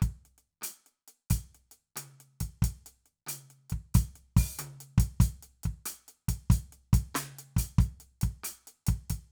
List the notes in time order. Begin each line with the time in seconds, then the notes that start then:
0.00 kick, cross-stick, closed hi-hat
0.25 closed hi-hat
0.38 closed hi-hat
0.61 closed hi-hat, cross-stick
0.86 closed hi-hat
1.08 closed hi-hat
1.30 closed hi-hat, kick
1.55 closed hi-hat
1.71 closed hi-hat
1.96 cross-stick, closed hi-hat, high tom
2.20 closed hi-hat
2.40 kick, closed hi-hat
2.62 kick, closed hi-hat
2.86 closed hi-hat
3.06 closed hi-hat
3.27 closed hi-hat, cross-stick, high tom
3.50 closed hi-hat
3.70 kick, closed hi-hat
3.94 closed hi-hat, kick
4.16 closed hi-hat
4.37 open hi-hat, kick
4.56 cross-stick, closed hi-hat, hi-hat pedal, high tom
4.80 closed hi-hat
4.98 kick, closed hi-hat
5.20 closed hi-hat, kick
5.43 closed hi-hat
5.63 kick, closed hi-hat
5.86 closed hi-hat, cross-stick
6.08 closed hi-hat
6.28 kick, closed hi-hat
6.50 closed hi-hat, kick
6.72 closed hi-hat
6.93 kick, closed hi-hat
7.15 closed hi-hat, snare, high tom
7.20 cross-stick
7.39 closed hi-hat
7.57 closed hi-hat, kick
7.78 closed hi-hat, kick
8.00 closed hi-hat
8.21 kick, closed hi-hat
8.44 closed hi-hat, cross-stick
8.67 closed hi-hat
8.87 kick, closed hi-hat
9.10 kick, closed hi-hat